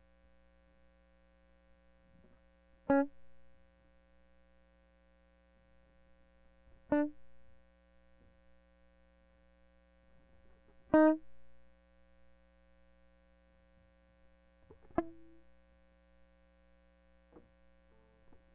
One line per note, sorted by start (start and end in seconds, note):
2.91 3.05 C#4
6.93 7.11 D4
10.95 11.15 D#4
14.99 15.05 E4